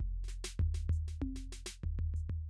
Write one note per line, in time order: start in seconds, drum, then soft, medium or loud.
0.01 kick soft
0.25 snare soft
0.29 snare soft
0.29 hi-hat pedal soft
0.45 snare medium
0.60 kick soft
0.60 floor tom loud
0.68 kick soft
0.75 snare soft
0.90 floor tom loud
0.90 hi-hat pedal soft
1.09 snare soft
1.22 kick soft
1.22 high tom loud
1.29 kick soft
1.37 snare soft
1.53 snare soft
1.53 hi-hat pedal soft
1.67 snare medium
1.84 kick soft
1.84 floor tom medium
2.00 floor tom medium
2.15 floor tom medium
2.15 hi-hat pedal soft
2.30 floor tom medium